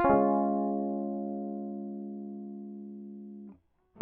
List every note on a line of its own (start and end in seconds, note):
0.00 3.52 F4
0.05 3.58 C#4
0.10 3.51 G#3
0.15 0.21 D3